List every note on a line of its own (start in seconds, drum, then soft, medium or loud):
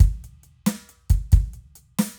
0.01 kick loud
0.01 closed hi-hat medium
0.25 closed hi-hat soft
0.44 closed hi-hat soft
0.67 snare loud
0.67 closed hi-hat loud
0.90 closed hi-hat soft
1.10 kick loud
1.10 closed hi-hat medium
1.33 kick loud
1.33 closed hi-hat medium
1.54 closed hi-hat soft
1.76 closed hi-hat medium
1.99 snare loud
1.99 open hi-hat loud